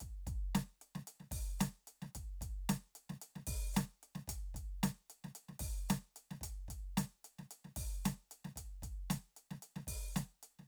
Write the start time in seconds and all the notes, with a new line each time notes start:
0.01 kick, closed hi-hat
0.27 kick, closed hi-hat
0.55 snare, closed hi-hat
0.82 closed hi-hat
0.96 snare
1.08 closed hi-hat
1.20 snare
1.32 kick, open hi-hat
1.60 snare, closed hi-hat, hi-hat pedal
1.88 closed hi-hat
2.02 snare
2.16 kick, closed hi-hat
2.42 kick, closed hi-hat
2.70 snare, closed hi-hat
2.96 closed hi-hat
3.10 snare
3.22 closed hi-hat
3.36 snare
3.47 kick, open hi-hat
3.74 snare, closed hi-hat, hi-hat pedal
4.04 closed hi-hat
4.16 snare
4.28 kick, closed hi-hat
4.55 kick, closed hi-hat
4.84 snare, closed hi-hat
5.10 closed hi-hat
5.25 snare
5.36 closed hi-hat
5.49 snare
5.60 kick, open hi-hat
5.90 snare, closed hi-hat, hi-hat pedal
6.17 closed hi-hat
6.31 snare
6.42 kick, closed hi-hat
6.69 kick, closed hi-hat
6.98 snare, closed hi-hat
7.25 closed hi-hat
7.39 snare
7.51 closed hi-hat
7.65 snare
7.77 kick, open hi-hat
8.05 snare, closed hi-hat, hi-hat pedal
8.32 closed hi-hat
8.45 snare
8.56 kick, closed hi-hat
8.83 kick, closed hi-hat
9.11 snare, closed hi-hat
9.37 closed hi-hat
9.51 snare
9.63 closed hi-hat
9.76 snare
9.88 kick, open hi-hat
10.17 snare, closed hi-hat, hi-hat pedal
10.43 closed hi-hat
10.59 snare